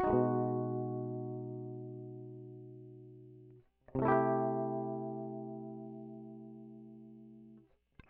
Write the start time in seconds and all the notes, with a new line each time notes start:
0.00 D#4 F#4
0.07 G#3
0.12 B2 D3
3.96 C3 E3
4.03 A3 E4
4.08 G4 B4